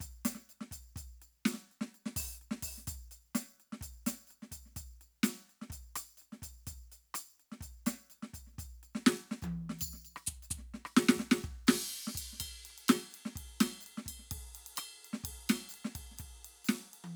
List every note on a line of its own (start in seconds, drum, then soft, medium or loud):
0.01 kick soft
0.01 percussion medium
0.26 snare medium
0.26 percussion loud
0.36 snare soft
0.50 percussion soft
0.61 snare soft
0.72 kick soft
0.72 percussion medium
0.97 kick soft
0.97 percussion medium
1.22 percussion soft
1.46 snare medium
1.46 percussion medium
1.54 snare soft
1.72 percussion soft
1.82 snare medium
1.95 percussion soft
2.06 snare medium
2.17 kick medium
2.17 snare soft
2.17 percussion loud
2.24 kick soft
2.29 kick soft
2.35 percussion soft
2.42 percussion soft
2.52 snare medium
2.63 kick soft
2.63 percussion loud
2.78 snare soft
2.78 percussion soft
2.88 kick soft
2.88 percussion loud
2.95 kick soft
3.12 percussion medium
3.36 snare medium
3.36 percussion loud
3.61 percussion soft
3.73 snare soft
3.82 kick soft
3.82 percussion medium
4.07 snare medium
4.07 percussion loud
4.28 percussion soft
4.31 percussion soft
4.43 snare soft
4.52 kick soft
4.52 percussion medium
4.66 snare soft
4.72 snare soft
4.75 kick soft
4.75 snare soft
4.75 percussion medium
5.02 percussion soft
5.24 snare loud
5.24 percussion loud
5.50 percussion soft
5.62 snare soft
5.71 kick soft
5.71 percussion medium
5.96 cross-stick medium
5.96 percussion loud
6.18 percussion soft
6.22 percussion soft
6.33 snare soft
6.43 kick soft
6.43 percussion medium
6.67 kick soft
6.67 percussion medium
6.74 kick soft
6.92 percussion soft
7.15 cross-stick medium
7.15 percussion loud
7.40 percussion soft
7.52 snare soft
7.61 kick soft
7.61 percussion medium
7.87 snare medium
7.87 percussion loud
8.11 percussion soft
8.12 percussion soft
8.23 snare soft
8.34 kick soft
8.34 percussion medium
8.47 snare soft
8.54 snare soft
8.59 kick soft
8.59 percussion medium
8.65 kick soft
8.84 percussion soft
8.96 snare medium
9.07 snare loud
9.32 snare medium
9.43 kick soft
9.43 high tom loud
9.43 percussion soft
9.49 kick soft
9.70 snare medium
9.79 percussion soft
9.82 kick soft
9.82 percussion loud
9.88 kick soft
9.94 snare soft
10.05 percussion soft
10.17 cross-stick medium
10.27 kick soft
10.27 floor tom loud
10.43 percussion soft
10.51 kick soft
10.51 floor tom loud
10.58 kick soft
10.58 snare soft
10.75 snare soft
10.86 cross-stick medium
10.97 snare loud
11.09 snare loud
11.17 kick soft
11.17 snare medium
11.32 snare loud
11.42 kick medium
11.42 percussion soft
11.51 kick soft
11.68 snare loud
11.68 crash loud
12.08 snare medium
12.08 percussion soft
12.15 kick soft
12.15 ride bell loud
12.23 kick soft
12.33 snare soft
12.38 kick soft
12.38 snare soft
12.38 ride bell loud
12.66 ride medium
12.71 cross-stick soft
12.78 ride medium
12.89 snare loud
12.89 ride bell loud
12.89 percussion medium
13.11 ride medium
13.11 percussion soft
13.26 snare medium
13.36 kick soft
13.36 ride medium
13.36 percussion soft
13.61 snare loud
13.61 ride bell loud
13.81 percussion medium
13.87 ride medium
13.98 snare medium
14.06 kick soft
14.06 ride bell medium
14.20 snare soft
14.32 kick soft
14.32 ride loud
14.32 percussion soft
14.38 kick soft
14.56 cross-stick soft
14.56 ride medium
14.67 ride medium
14.77 cross-stick medium
14.77 ride bell loud
14.77 percussion medium
15.05 ride medium
15.14 snare medium
15.24 kick soft
15.24 ride loud
15.24 percussion soft
15.30 kick soft
15.50 snare loud
15.50 ride bell loud
15.70 percussion medium
15.75 ride medium
15.85 snare medium
15.96 kick soft
15.96 ride medium
16.03 kick soft
16.12 snare soft
16.16 snare soft
16.16 ride medium
16.16 percussion soft
16.20 kick soft
16.45 ride medium
16.65 percussion medium
16.69 snare medium
16.69 ride loud
16.94 ride medium
17.05 high tom medium
17.05 percussion soft